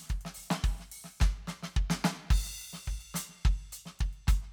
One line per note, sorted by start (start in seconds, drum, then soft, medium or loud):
0.01 snare soft
0.04 snare soft
0.04 hi-hat pedal soft
0.07 snare soft
0.09 kick medium
0.09 snare soft
0.09 closed hi-hat soft
0.21 closed hi-hat soft
0.25 snare medium
0.34 open hi-hat medium
0.34 kick soft
0.51 snare loud
0.64 kick loud
0.64 open hi-hat soft
0.80 snare soft
0.92 open hi-hat medium
1.04 snare soft
1.20 kick loud
1.20 snare medium
1.20 hi-hat pedal soft
1.48 snare medium
1.63 snare medium
1.73 kick loud
1.73 hi-hat pedal soft
1.90 snare loud
2.04 snare loud
2.31 kick loud
2.31 crash loud
2.45 snare soft
2.61 closed hi-hat soft
2.73 snare medium
2.86 kick medium
2.86 closed hi-hat soft
3.01 closed hi-hat soft
3.14 closed hi-hat loud
3.14 snare medium
3.29 snare soft
3.45 kick loud
3.45 closed hi-hat soft
3.57 closed hi-hat soft
3.72 closed hi-hat medium
3.86 snare medium
3.99 kick medium
3.99 closed hi-hat soft
4.13 closed hi-hat soft
4.27 closed hi-hat medium
4.27 kick loud
4.27 cross-stick medium
4.42 snare soft